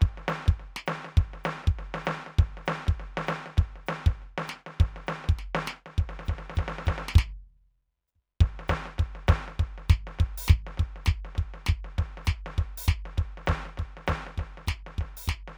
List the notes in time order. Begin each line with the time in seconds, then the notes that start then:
0.02 kick, snare
0.18 snare
0.29 snare, hi-hat pedal
0.47 kick, snare
0.60 snare
0.77 snare
0.87 snare, hi-hat pedal
1.05 snare
1.18 kick, snare
1.34 snare
1.45 snare, hi-hat pedal
1.65 kick, snare
1.79 snare
1.95 snare
2.05 snare, hi-hat pedal
2.27 snare
2.39 kick, snare
2.57 kick, snare
2.66 snare, hi-hat pedal
2.88 kick, snare
3.00 snare
3.18 snare
3.28 snare, hi-hat pedal
3.47 snare
3.58 kick, snare
3.77 snare
3.87 snare, hi-hat pedal
4.07 kick, snare
4.23 snare
4.39 snare
4.48 snare, hi-hat pedal
4.67 snare
4.81 kick, snare
4.97 snare
5.07 snare, hi-hat pedal
5.25 snare
5.30 kick
5.39 snare
5.56 snare
5.67 snare, hi-hat pedal
5.87 snare
5.99 kick, snare
6.10 snare
6.26 kick, hi-hat pedal
6.30 snare
6.39 snare
6.50 snare
6.56 kick, hi-hat pedal
6.60 snare
6.69 snare
6.79 snare
6.86 kick, snare, hi-hat pedal
6.99 snare
7.09 snare
7.14 kick, hi-hat pedal
7.19 snare
8.08 hi-hat pedal
8.16 kick
8.41 kick, snare
8.60 snare
8.69 kick, snare, hi-hat pedal
8.86 snare
8.99 kick, snare
9.16 snare
9.28 kick, snare, hi-hat pedal
9.49 snare
9.60 kick, snare
9.79 snare
9.90 kick, snare, hi-hat pedal
10.08 snare
10.20 kick, snare
10.38 open hi-hat
10.48 kick, snare, hi-hat pedal
10.68 snare
10.78 kick, snare
10.97 snare
11.06 kick, snare, hi-hat pedal
11.26 snare
11.36 kick, snare
11.55 snare
11.67 kick, snare, hi-hat pedal
11.85 snare
11.99 kick, snare
12.18 snare
12.26 kick, snare, hi-hat pedal
12.47 snare
12.59 kick, snare
12.78 open hi-hat
12.86 kick, snare, hi-hat pedal
13.06 snare
13.18 kick, snare
13.38 snare
13.47 kick, hi-hat pedal
13.66 snare
13.78 kick, snare
13.98 snare
14.08 kick, snare, hi-hat pedal
14.28 snare
14.38 kick, snare
14.58 snare
14.68 kick, snare, hi-hat pedal
14.87 snare
14.99 kick, snare
15.18 open hi-hat
15.27 kick, snare, hi-hat pedal
15.48 snare